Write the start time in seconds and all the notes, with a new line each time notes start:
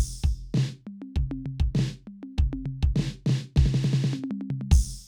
0.24 kick
0.55 snare
0.58 snare
0.88 mid tom
1.03 high tom
1.17 kick, floor tom
1.32 high tom
1.47 floor tom
1.61 kick
1.76 snare
1.80 snare
2.08 mid tom
2.24 high tom
2.39 kick, floor tom
2.54 high tom
2.67 floor tom
2.83 kick
2.97 snare
3.00 snare
3.27 snare
3.30 snare
3.57 kick, snare
3.67 snare
3.75 snare
3.83 snare, hi-hat pedal
3.94 snare
4.05 snare
4.14 high tom
4.25 high tom
4.32 mid tom
4.42 high tom
4.51 floor tom
4.62 mid tom
4.72 kick, crash